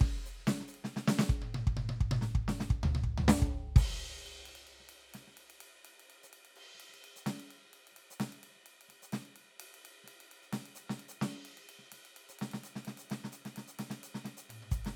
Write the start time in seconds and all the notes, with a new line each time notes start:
0.01 kick, crash
0.26 hi-hat pedal
0.48 snare, ride
0.61 snare
0.69 hi-hat pedal
0.75 ride
0.85 snare
0.97 snare
1.08 snare
1.19 snare
1.30 kick
1.42 high tom
1.55 high tom
1.68 kick
1.77 high tom
1.90 high tom
2.01 kick
2.12 high tom
2.22 snare
2.36 kick
2.49 snare
2.61 snare
2.71 kick
2.84 floor tom
2.96 high tom
3.04 kick
3.18 floor tom
3.29 snare
3.43 kick
3.77 open hi-hat, kick, ride
4.27 ride
4.44 snare, ride
4.47 snare
4.56 ride
4.68 ride
4.80 snare
4.90 ride
5.15 snare, ride
5.28 snare
5.38 ride
5.51 ride
5.61 ride
5.85 ride
6.00 ride
6.11 ride
6.24 hi-hat pedal
6.34 ride
6.46 ride
6.57 ride
6.75 snare
6.81 ride
6.89 snare
6.94 snare, ride
7.17 hi-hat pedal
7.27 snare, ride
7.40 ride
7.51 ride
7.63 snare
7.67 snare
7.74 ride
7.88 ride
7.92 snare
7.94 snare, ride
8.11 hi-hat pedal
8.20 snare, ride
8.33 ride
8.44 ride
8.56 snare
8.67 ride
8.82 ride
8.89 snare, ride
9.03 hi-hat pedal
9.13 snare, ride
9.20 hi-hat pedal
9.26 ride
9.37 ride
9.60 ride
9.75 ride
9.86 ride
10.04 snare
10.08 ride
10.21 ride
10.32 ride
10.43 hi-hat pedal
10.53 snare, ride
10.66 ride
10.76 hi-hat pedal, ride
10.90 snare
11.00 ride
11.09 hi-hat pedal, ride
11.22 snare, ride
11.30 hi-hat pedal
11.46 ride
11.58 ride
11.70 ride
11.79 snare
11.92 snare, ride
12.06 ride
12.17 ride
12.29 hi-hat pedal
12.40 snare, ride
12.52 snare, ride
12.64 hi-hat pedal, ride
12.76 snare
12.86 snare, ride
12.98 hi-hat pedal, ride
13.11 snare, ride
13.25 snare
13.33 hi-hat pedal, ride
13.46 snare, ride
13.57 snare, ride
13.68 hi-hat pedal
13.79 snare, ride
13.91 snare, ride
14.04 hi-hat pedal, ride
14.15 snare
14.25 snare, ride
14.38 hi-hat pedal, ride
14.50 high tom, ride
14.63 high tom
14.72 kick, hi-hat pedal, ride
14.86 snare, ride